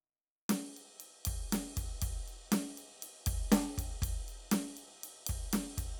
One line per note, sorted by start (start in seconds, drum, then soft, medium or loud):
0.49 snare medium
0.49 ride loud
0.76 ride soft
1.00 ride medium
1.25 kick medium
1.25 ride loud
1.52 snare medium
1.52 ride loud
1.77 kick medium
1.77 ride medium
2.02 kick medium
2.02 ride loud
2.27 ride soft
2.52 snare medium
2.52 ride loud
2.77 ride medium
3.02 ride medium
3.26 kick medium
3.26 ride loud
3.52 snare loud
3.52 ride loud
3.77 kick medium
3.77 ride medium
4.02 kick medium
4.02 ride loud
4.28 ride soft
4.51 snare medium
4.51 ride loud
4.77 ride medium
5.03 ride medium
5.26 kick medium
5.26 ride loud
5.53 snare medium
5.53 ride loud
5.78 kick medium
5.78 ride medium